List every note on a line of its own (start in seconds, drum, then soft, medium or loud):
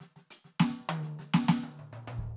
0.01 snare soft
0.17 snare soft
0.31 closed hi-hat loud
0.45 snare soft
0.60 snare loud
0.74 snare soft
0.90 high tom loud
1.03 snare soft
1.20 snare soft
1.34 snare loud
1.49 snare loud
1.64 high tom medium
1.80 mid tom soft
1.94 mid tom medium
2.08 mid tom medium
2.19 kick soft